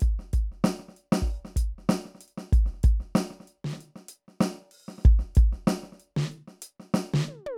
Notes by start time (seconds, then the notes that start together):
0.01 closed hi-hat, kick
0.20 snare
0.34 closed hi-hat, kick
0.52 snare
0.65 snare
0.80 snare
0.89 snare
0.97 closed hi-hat
1.13 snare
1.23 kick
1.28 open hi-hat
1.38 hi-hat pedal
1.46 snare
1.57 closed hi-hat, kick
1.79 snare
1.90 snare, hi-hat pedal
2.06 snare
2.15 snare
2.21 closed hi-hat
2.28 closed hi-hat
2.38 snare
2.53 kick, closed hi-hat
2.67 snare
2.74 snare
2.84 closed hi-hat, kick
3.01 snare
3.16 snare
3.31 snare
3.41 snare
3.48 closed hi-hat
3.65 snare
3.69 hi-hat pedal
3.74 snare
3.81 closed hi-hat
3.96 snare
4.09 closed hi-hat
4.29 snare
4.41 snare
4.55 snare
4.59 snare
4.62 snare
4.72 open hi-hat
4.80 open hi-hat
4.89 snare
5.05 kick, hi-hat pedal, open hi-hat
5.20 snare
5.36 closed hi-hat, kick
5.53 snare
5.68 snare
5.84 snare
5.93 snare
6.00 closed hi-hat
6.17 snare
6.22 hi-hat pedal
6.32 open hi-hat
6.48 snare
6.60 closed hi-hat, hi-hat pedal
6.80 snare
6.95 snare
7.14 snare
7.26 hi-hat pedal, high tom
7.47 high tom